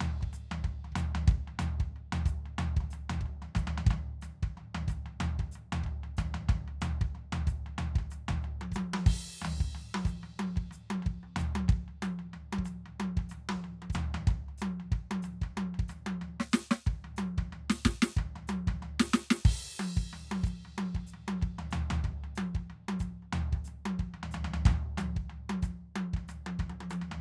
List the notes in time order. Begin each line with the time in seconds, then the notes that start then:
0.01 floor tom
0.21 kick, floor tom
0.33 floor tom, hi-hat pedal
0.52 floor tom
0.64 kick, floor tom
0.85 floor tom
0.92 kick, floor tom
0.97 hi-hat pedal
1.15 floor tom
1.28 kick, floor tom
1.48 floor tom
1.59 floor tom, hi-hat pedal
1.80 kick, floor tom
1.96 floor tom
2.13 floor tom
2.26 kick, floor tom, hi-hat pedal
2.46 floor tom
2.59 floor tom
2.77 kick, floor tom
2.91 floor tom, hi-hat pedal
3.10 floor tom
3.21 kick
3.26 floor tom
3.42 floor tom
3.55 kick, floor tom, hi-hat pedal
3.68 floor tom
3.78 floor tom
3.87 kick
3.91 floor tom
4.07 kick
4.22 floor tom, hi-hat pedal
4.43 kick, floor tom
4.58 floor tom
4.75 floor tom
4.88 kick, floor tom, hi-hat pedal
5.06 floor tom
5.21 floor tom
5.39 kick, floor tom
5.52 floor tom, hi-hat pedal
5.73 floor tom
5.84 kick, floor tom
6.04 floor tom
6.17 kick, floor tom, hi-hat pedal
6.35 floor tom
6.49 kick, floor tom
6.68 floor tom
6.81 floor tom, hi-hat pedal
7.01 kick, floor tom
7.15 floor tom
7.33 floor tom
7.47 kick, floor tom, hi-hat pedal
7.67 floor tom
7.79 floor tom
7.96 kick, floor tom
8.11 floor tom, hi-hat pedal
8.29 kick, floor tom
8.42 floor tom, hi-hat pedal
8.62 high tom
8.72 kick, hi-hat pedal
8.76 high tom
8.94 high tom
9.07 kick, crash
9.40 floor tom, hi-hat pedal
9.45 floor tom
9.60 kick
9.75 floor tom
9.95 high tom
10.05 kick, floor tom, hi-hat pedal
10.24 floor tom
10.40 high tom
10.56 kick, floor tom
10.71 floor tom, hi-hat pedal
10.91 high tom
11.03 kick, floor tom
11.23 high tom
11.36 kick, floor tom, hi-hat pedal
11.56 high tom
11.69 kick, floor tom
11.88 floor tom
12.02 hi-hat pedal, high tom
12.19 floor tom
12.34 floor tom
12.53 high tom
12.59 kick
12.65 floor tom, hi-hat pedal
12.86 floor tom
13.00 high tom
13.17 kick, floor tom
13.29 floor tom, hi-hat pedal
13.49 high tom
13.56 kick
13.64 floor tom
13.82 high tom
13.90 kick, hi-hat pedal
13.95 floor tom
14.15 floor tom
14.27 kick, floor tom
14.47 kick, floor tom
14.58 hi-hat pedal
14.62 high tom
14.80 floor tom
14.92 kick, floor tom
15.11 high tom
15.23 floor tom, hi-hat pedal
15.42 kick, floor tom
15.57 high tom
15.75 floor tom
15.79 kick
15.89 floor tom, hi-hat pedal
16.07 high tom
16.22 floor tom
16.40 snare
16.52 kick, snare, hi-hat pedal
16.71 snare
16.87 kick, floor tom
17.05 floor tom
17.17 hi-hat pedal, high tom
17.38 kick, floor tom
17.53 floor tom
17.70 snare
17.84 kick, snare, hi-hat pedal
18.02 snare
18.17 kick, floor tom
18.36 floor tom
18.48 hi-hat pedal, high tom
18.68 kick, floor tom
18.83 floor tom
19.00 snare
19.12 snare, hi-hat pedal
19.31 snare
19.45 kick, crash
19.79 hi-hat pedal, high tom
19.97 kick
20.13 floor tom
20.32 high tom
20.44 kick, floor tom, hi-hat pedal
20.65 floor tom
20.78 high tom
20.95 kick, floor tom
21.07 hi-hat pedal
21.14 floor tom
21.28 high tom
21.42 kick, floor tom
21.59 floor tom
21.71 floor tom, hi-hat pedal
21.91 floor tom
22.04 kick, floor tom
22.24 floor tom
22.36 hi-hat pedal, high tom
22.55 kick, floor tom
22.70 floor tom
22.89 high tom
23.00 kick, floor tom, hi-hat pedal
23.23 high tom
23.33 floor tom
23.53 kick, high tom
23.65 floor tom, hi-hat pedal
23.86 high tom
24.00 kick, floor tom
24.14 floor tom
24.23 floor tom
24.32 floor tom, hi-hat pedal
24.45 floor tom
24.54 floor tom
24.66 kick, floor tom
24.98 floor tom, hi-hat pedal, high tom
25.17 kick
25.30 floor tom
25.50 high tom
25.63 kick, floor tom, hi-hat pedal
25.96 high tom
26.14 kick, floor tom
26.29 floor tom, hi-hat pedal
26.47 high tom
26.59 kick, floor tom
26.70 high tom
26.81 high tom
26.90 hi-hat pedal, high tom
27.02 floor tom
27.12 floor tom